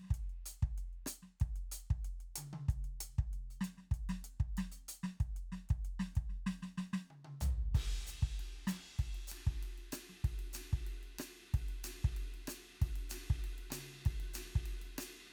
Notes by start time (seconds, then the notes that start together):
0.01 snare
0.04 snare
0.07 kick, snare
0.14 closed hi-hat
0.30 closed hi-hat
0.46 closed hi-hat
0.63 kick
0.78 closed hi-hat
0.93 closed hi-hat
1.06 closed hi-hat, cross-stick
1.23 snare
1.40 kick, closed hi-hat
1.56 closed hi-hat
1.72 closed hi-hat
1.91 kick
2.05 closed hi-hat
2.21 closed hi-hat
2.36 closed hi-hat, high tom
2.53 high tom
2.69 kick, closed hi-hat
2.85 closed hi-hat
3.01 closed hi-hat
3.19 kick
3.33 closed hi-hat
3.51 closed hi-hat
3.61 snare, closed hi-hat
3.78 snare
3.91 kick, closed hi-hat
4.09 snare, closed hi-hat
4.25 closed hi-hat
4.40 kick
4.57 snare, closed hi-hat
4.72 closed hi-hat
4.89 closed hi-hat
5.04 snare
5.20 kick, closed hi-hat
5.37 closed hi-hat
5.52 snare
5.69 kick, closed hi-hat
5.85 closed hi-hat
6.00 snare
6.16 kick, closed hi-hat
6.30 snare
6.47 snare
6.63 snare
6.78 snare
6.93 snare
7.11 high tom
7.25 high tom
7.41 floor tom, hi-hat pedal
7.75 kick, crash, ride
8.07 hi-hat pedal, ride
8.23 kick
8.40 ride
8.67 snare, hi-hat pedal, ride
8.99 kick, ride
9.15 ride
9.28 hi-hat pedal
9.32 ride
9.47 kick
9.63 ride
9.78 ride
9.92 cross-stick, hi-hat pedal, ride
10.09 snare
10.24 kick, ride
10.39 ride
10.53 hi-hat pedal, ride
10.73 kick
10.87 ride
11.03 ride
11.19 cross-stick, hi-hat pedal, ride
11.54 kick, ride
11.69 ride
11.84 hi-hat pedal, ride
12.05 kick
12.17 ride
12.34 ride
12.48 cross-stick, hi-hat pedal, ride
12.82 kick, ride
12.96 ride
13.10 hi-hat pedal, ride
13.30 kick
13.44 ride
13.58 ride
13.71 cross-stick, hi-hat pedal, high tom, ride
14.06 kick, ride
14.20 ride
14.34 hi-hat pedal, ride
14.56 kick
14.66 ride
14.82 ride
14.98 cross-stick, hi-hat pedal, ride